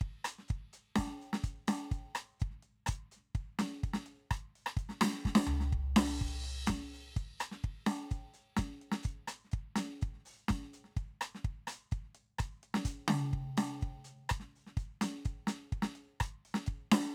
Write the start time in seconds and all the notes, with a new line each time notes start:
0.01 kick, closed hi-hat
0.25 open hi-hat, cross-stick
0.39 snare
0.48 open hi-hat, kick, snare
0.55 snare
0.73 closed hi-hat
0.96 closed hi-hat, kick, snare
1.07 snare
1.21 open hi-hat
1.33 snare
1.44 closed hi-hat, kick
1.68 open hi-hat, snare
1.91 closed hi-hat, kick
2.15 closed hi-hat, cross-stick
2.40 open hi-hat, kick
2.50 snare
2.63 open hi-hat
2.86 open hi-hat, kick, cross-stick
3.12 open hi-hat
3.16 snare
3.35 kick, closed hi-hat
3.59 open hi-hat, snare
3.84 open hi-hat, kick
3.94 snare
4.06 open hi-hat
4.31 open hi-hat, kick, cross-stick
4.56 open hi-hat
4.66 cross-stick
4.77 kick, closed hi-hat
4.89 snare
5.01 snare
5.12 snare
5.25 kick, snare
5.35 snare
5.47 floor tom
5.60 snare
5.73 kick
5.96 snare, crash
6.21 kick
6.44 closed hi-hat
6.67 closed hi-hat, kick, snare
6.93 open hi-hat
7.16 closed hi-hat, kick
7.40 open hi-hat, cross-stick
7.52 snare
7.64 kick, closed hi-hat
7.87 open hi-hat, snare
8.11 closed hi-hat, kick, snare
8.34 open hi-hat
8.57 open hi-hat, kick, snare
8.82 closed hi-hat
8.92 snare
9.03 open hi-hat, kick
9.28 open hi-hat, cross-stick
9.45 snare
9.52 kick, open hi-hat
9.76 closed hi-hat, snare
10.02 closed hi-hat, kick
10.13 snare
10.17 snare
10.25 open hi-hat
10.49 open hi-hat, kick, snare
10.63 snare
10.74 open hi-hat
10.84 snare
10.89 snare
10.97 kick, closed hi-hat
11.21 open hi-hat, cross-stick
11.35 snare
11.45 kick, closed hi-hat
11.67 open hi-hat, cross-stick
11.91 closed hi-hat, kick
12.03 snare
12.15 closed hi-hat
12.39 closed hi-hat, kick, cross-stick
12.63 open hi-hat
12.74 snare
12.85 closed hi-hat, kick
12.94 crash
13.08 snare, high tom
13.33 kick
13.57 closed hi-hat, snare
13.81 open hi-hat, kick
13.88 snare
14.04 closed hi-hat
14.29 closed hi-hat, kick, cross-stick
14.40 snare
14.55 open hi-hat
14.67 snare
14.77 closed hi-hat, kick
15.01 open hi-hat, snare
15.25 closed hi-hat, kick
15.47 closed hi-hat, snare
15.72 kick, closed hi-hat
15.82 snare
15.95 open hi-hat
16.20 open hi-hat, kick, cross-stick
16.45 open hi-hat
16.54 snare
16.67 kick, closed hi-hat
16.92 snare